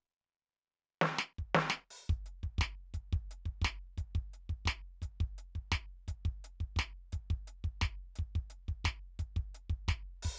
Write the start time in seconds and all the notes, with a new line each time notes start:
1.01 snare
1.18 snare
1.38 kick
1.54 snare
1.70 snare
1.90 open hi-hat
2.08 kick, hi-hat pedal
2.26 closed hi-hat
2.43 kick
2.58 kick, snare, closed hi-hat
2.94 kick, closed hi-hat
3.12 kick
3.31 closed hi-hat
3.45 kick
3.62 closed hi-hat, kick, snare
3.97 kick, closed hi-hat
4.15 kick
4.33 closed hi-hat
4.49 kick
4.65 closed hi-hat, kick, snare
5.02 closed hi-hat, kick
5.20 kick
5.38 closed hi-hat
5.55 kick
5.72 kick, snare, closed hi-hat
6.08 kick, closed hi-hat
6.25 kick
6.44 closed hi-hat
6.60 kick
6.76 kick, snare, closed hi-hat
7.12 kick, closed hi-hat
7.30 kick
7.47 closed hi-hat
7.64 kick
7.81 closed hi-hat, kick, snare
8.15 closed hi-hat, kick
8.35 kick
8.50 closed hi-hat
8.68 kick
8.84 closed hi-hat, kick, snare
9.19 closed hi-hat, kick
9.36 kick
9.54 closed hi-hat
9.69 kick
9.88 closed hi-hat, kick, snare
10.22 open hi-hat, kick